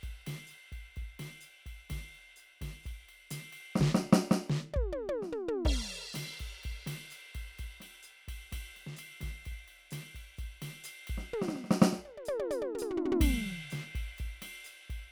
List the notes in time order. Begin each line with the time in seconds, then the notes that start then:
0.01 kick, hi-hat pedal, ride
0.08 kick
0.26 snare, ride
0.46 hi-hat pedal
0.50 ride
0.71 kick, ride
0.94 kick, hi-hat pedal, ride
1.01 kick
1.19 snare, ride
1.40 hi-hat pedal, ride
1.65 kick, ride
1.89 kick, snare, hi-hat pedal, ride
1.96 kick
2.14 ride
2.36 hi-hat pedal, ride
2.61 kick, snare, ride
2.83 kick, hi-hat pedal, ride
2.90 kick
3.08 ride
3.30 snare, hi-hat pedal, ride
3.52 ride
3.75 kick, snare
3.81 snare
3.94 snare
4.12 snare
4.31 snare
4.49 snare
4.73 kick, high tom
4.82 kick
4.92 high tom
5.08 high tom
5.22 snare
5.32 mid tom
5.48 mid tom
5.65 kick, crash
6.13 snare, hi-hat pedal, ride
6.16 snare
6.39 kick, ride
6.61 kick, hi-hat pedal, ride
6.70 kick, snare
6.86 snare, ride
7.10 hi-hat pedal, ride
7.34 kick, ride
7.57 kick, hi-hat pedal, ride
7.64 kick
7.80 snare, ride
8.02 hi-hat pedal, ride
8.28 kick, ride
8.51 kick, snare, hi-hat pedal, ride
8.57 kick
8.76 snare, ride
8.86 snare
8.96 hi-hat pedal, ride
9.20 kick, snare, ride
9.28 kick
9.43 kick, hi-hat pedal, ride
9.51 kick
9.67 ride
9.90 snare, hi-hat pedal, ride
10.14 kick, ride
10.37 kick, hi-hat pedal, ride
10.43 kick
10.61 snare, ride
10.83 hi-hat pedal, ride
11.07 kick, ride
11.15 kick, snare
11.33 mid tom
11.41 snare
11.48 snare
11.55 snare
11.64 snare
11.70 snare
11.81 snare
11.92 snare
11.98 kick
12.05 high tom
12.17 high tom
12.25 hi-hat pedal, high tom
12.39 high tom
12.50 hi-hat pedal, high tom
12.61 high tom
12.74 mid tom
12.78 hi-hat pedal, mid tom
12.90 floor tom
12.96 floor tom
13.05 floor tom
13.11 floor tom
13.20 kick, ride
13.70 snare, hi-hat pedal, ride
13.94 kick, ride
14.00 kick
14.16 kick, hi-hat pedal, ride
14.25 kick
14.42 snare, ride
14.64 hi-hat pedal, ride
14.89 kick, ride